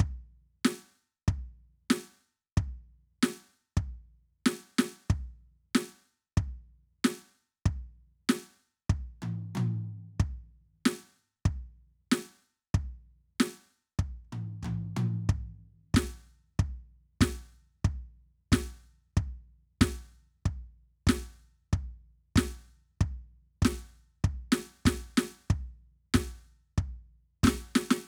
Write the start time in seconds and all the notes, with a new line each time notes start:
0.01 kick
0.66 snare
1.29 kick
1.91 snare
2.58 kick
3.24 snare
3.78 kick
4.47 snare
4.80 snare
5.11 kick
5.76 snare
6.38 kick
7.05 snare
7.67 kick
8.30 snare
8.91 kick
9.23 floor tom, high tom
9.56 floor tom, high tom
10.21 kick
10.87 snare
11.46 kick
12.13 snare
12.75 kick
13.41 snare
14.00 kick
14.25 kick
14.33 floor tom, high tom
14.64 kick, floor tom, high tom
14.97 floor tom, high tom
15.30 kick
15.95 kick, snare
16.60 kick
17.22 kick, snare
17.86 kick
18.53 kick, snare
19.18 kick
19.82 kick, snare
20.47 kick
21.08 kick, snare
21.74 kick
22.37 kick, snare
23.02 kick
23.63 kick, snare
24.25 kick
24.53 snare
24.86 kick, snare
25.18 snare
25.51 kick
26.15 kick, snare
26.79 kick
27.44 kick, snare
27.48 snare
27.76 snare
27.92 snare